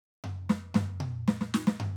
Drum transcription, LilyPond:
\new DrumStaff \drummode { \time 4/4 \tempo 4 = 118 r8 tomfh8 sn8 <tomfh sn>8 toml8 sn16 sn16 sn16 sn16 tomfh8 | }